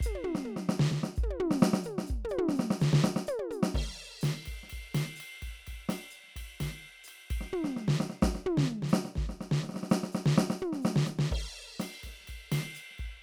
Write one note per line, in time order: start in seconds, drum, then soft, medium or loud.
0.02 kick soft
0.02 hi-hat pedal loud
0.06 kick soft
0.06 mid tom medium
0.16 high tom medium
0.25 floor tom loud
0.36 snare medium
0.46 mid tom medium
0.57 snare medium
0.63 hi-hat pedal soft
0.70 snare medium
0.81 snare loud
0.89 snare medium
0.89 hi-hat pedal soft
1.04 snare medium
1.17 kick medium
1.17 hi-hat pedal medium
1.24 kick soft
1.24 mid tom medium
1.28 kick soft
1.28 high tom medium
1.40 floor tom loud
1.52 snare medium
1.60 snare loud
1.60 hi-hat pedal medium
1.74 snare medium
1.85 hi-hat pedal medium
1.85 mid tom medium
1.99 snare medium
2.08 kick soft
2.08 hi-hat pedal medium
2.25 mid tom loud
2.30 hi-hat pedal medium
2.30 high tom loud
2.39 floor tom loud
2.50 snare medium
2.56 hi-hat pedal medium
2.60 snare medium
2.72 snare medium
2.81 snare loud
2.81 hi-hat pedal medium
2.94 snare loud
3.05 snare loud
3.05 hi-hat pedal medium
3.17 snare medium
3.28 hi-hat pedal loud
3.28 high tom loud
3.40 high tom medium
3.51 hi-hat pedal medium
3.51 mid tom medium
3.64 snare medium
3.75 kick soft
3.75 snare soft
3.75 crash medium
3.82 kick soft
4.22 snare medium
4.22 hi-hat pedal loud
4.22 ride medium
4.47 kick soft
4.47 ride medium
4.54 kick soft
4.64 snare soft
4.71 kick soft
4.71 hi-hat pedal soft
4.71 ride medium
4.79 kick soft
4.96 snare medium
4.96 ride medium
5.17 hi-hat pedal medium
5.21 ride medium
5.43 kick soft
5.43 ride medium
5.48 kick soft
5.67 kick soft
5.67 hi-hat pedal soft
5.67 ride medium
5.74 kick soft
5.90 snare medium
5.90 ride medium
6.12 hi-hat pedal medium
6.25 snare soft
6.29 snare soft
6.37 kick soft
6.37 ride medium
6.42 kick soft
6.61 kick soft
6.61 snare medium
6.61 hi-hat pedal soft
6.61 ride medium
6.67 kick soft
7.05 hi-hat pedal loud
7.05 ride medium
7.31 kick soft
7.31 ride medium
7.38 kick soft
7.38 snare soft
7.53 floor tom loud
7.65 snare soft
7.78 snare soft
7.89 snare loud
7.95 hi-hat pedal medium
8.01 snare medium
8.11 snare soft
8.23 kick soft
8.23 snare loud
8.23 hi-hat pedal medium
8.30 kick soft
8.36 snare soft
8.47 floor tom loud
8.58 snare loud
8.66 hi-hat pedal soft
8.72 snare soft
8.83 snare medium
8.90 hi-hat pedal medium
8.94 snare loud
9.06 snare soft
9.16 kick soft
9.16 snare medium
9.16 hi-hat pedal soft
9.30 snare soft
9.42 snare soft
9.52 snare loud
9.64 snare soft
9.70 snare soft
9.75 snare soft
9.77 snare soft
9.84 snare soft
9.91 snare loud
9.91 hi-hat pedal medium
10.04 snare medium
10.13 snare medium
10.13 hi-hat pedal medium
10.27 snare loud
10.37 snare loud
10.37 hi-hat pedal medium
10.51 snare medium
10.60 floor tom loud
10.60 hi-hat pedal soft
10.74 snare soft
10.83 snare medium
10.83 hi-hat pedal medium
10.97 snare loud
11.07 snare soft
11.07 hi-hat pedal medium
11.20 snare loud
11.32 kick soft
11.32 hi-hat pedal soft
11.32 crash medium
11.39 kick soft
11.81 snare medium
11.81 hi-hat pedal medium
11.81 ride medium
12.04 kick soft
12.04 snare soft
12.04 ride medium
12.09 kick soft
12.14 snare soft
12.22 snare soft
12.25 snare soft
12.25 hi-hat pedal soft
12.25 ride medium
12.30 kick soft
12.35 kick soft
12.53 snare medium
12.53 ride loud
12.62 snare soft
12.76 hi-hat pedal medium
12.76 ride soft
12.92 snare soft
12.99 kick soft
12.99 ride soft
13.06 kick soft